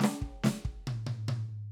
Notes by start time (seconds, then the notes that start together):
0.00 snare
0.03 snare
0.22 kick
0.44 snare
0.46 snare
0.65 kick
0.87 high tom
1.07 high tom
1.28 high tom